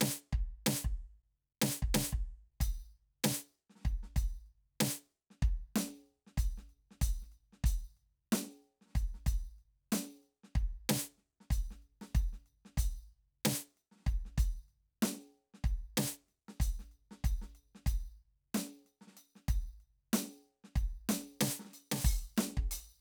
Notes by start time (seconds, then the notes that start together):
0.01 snare
0.33 kick
0.66 snare
0.84 kick
1.62 snare
1.82 kick
1.94 snare
2.13 kick
2.61 kick, closed hi-hat
3.24 closed hi-hat, snare
3.70 snare
3.76 snare
3.79 snare
3.81 kick, snare
3.86 closed hi-hat
4.03 snare
4.16 closed hi-hat, kick
4.46 closed hi-hat
4.80 closed hi-hat, snare
5.30 snare
5.42 kick, closed hi-hat
5.76 closed hi-hat, snare
6.06 closed hi-hat
6.27 snare
6.38 closed hi-hat, kick
6.58 snare
6.69 closed hi-hat
6.91 snare
7.01 closed hi-hat, kick
7.22 snare
7.32 closed hi-hat
7.53 snare
7.64 closed hi-hat, kick
7.97 closed hi-hat
8.32 closed hi-hat, snare
8.64 closed hi-hat
8.81 snare
8.86 snare
8.89 snare
8.93 closed hi-hat, kick, snare
9.14 snare
9.26 closed hi-hat, kick
9.58 closed hi-hat
9.92 closed hi-hat, snare
10.23 closed hi-hat
10.44 snare
10.55 kick, closed hi-hat
10.89 closed hi-hat, snare
11.18 snare
11.40 snare
11.51 closed hi-hat, kick
11.71 snare
11.82 closed hi-hat
12.01 snare
12.15 kick, closed hi-hat
12.33 snare
12.46 closed hi-hat
12.65 snare
12.77 closed hi-hat, kick
13.45 closed hi-hat, snare
13.75 snare, closed hi-hat
13.91 snare
13.96 snare
13.99 snare
14.07 kick, closed hi-hat
14.25 snare
14.38 closed hi-hat, kick
14.68 closed hi-hat
15.02 closed hi-hat, snare
15.34 closed hi-hat
15.54 snare
15.64 kick, closed hi-hat
15.97 snare, closed hi-hat
16.28 snare, closed hi-hat
16.48 snare
16.60 closed hi-hat, kick
16.79 snare
16.91 closed hi-hat
17.11 snare
17.24 kick, closed hi-hat
17.42 snare
17.55 closed hi-hat
17.75 snare
17.86 kick, closed hi-hat
18.54 snare, closed hi-hat
18.85 snare, closed hi-hat
19.01 snare
19.07 snare
19.15 snare, closed hi-hat
19.36 snare
19.48 kick, closed hi-hat
19.80 closed hi-hat
20.13 closed hi-hat, snare
20.46 closed hi-hat
20.64 snare
20.76 kick, closed hi-hat
21.09 closed hi-hat, snare
21.41 closed hi-hat, snare
21.59 snare
21.65 snare
21.68 snare
21.73 closed hi-hat, snare
21.92 snare
22.05 kick, percussion
22.37 snare, hi-hat pedal
22.57 kick
22.71 closed hi-hat